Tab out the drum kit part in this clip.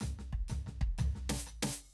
HH |p--p--p--p--|
PC |----------x-|
SD |oo-oo-rooro-|
FT |oo-oo-o-----|
BD |--o--o------|